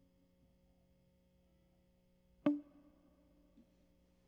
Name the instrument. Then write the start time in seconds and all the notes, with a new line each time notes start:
electric guitar
2.46 D4